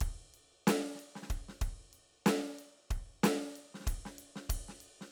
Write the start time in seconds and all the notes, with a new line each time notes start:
0.01 kick, ride
0.34 ride
0.50 ride
0.67 snare, ride
0.95 snare
0.99 ride
1.11 ride
1.16 snare
1.23 snare
1.26 snare
1.30 kick, ride
1.49 snare
1.62 kick, ride
1.93 ride
2.26 snare, ride
2.57 snare, ride
2.91 kick, ride
3.24 snare, ride
3.56 ride
3.74 snare
3.80 snare
3.84 snare
3.87 kick, snare, ride
4.06 snare
4.19 ride
4.36 snare
4.50 kick, ride
4.69 snare
4.81 ride
5.01 snare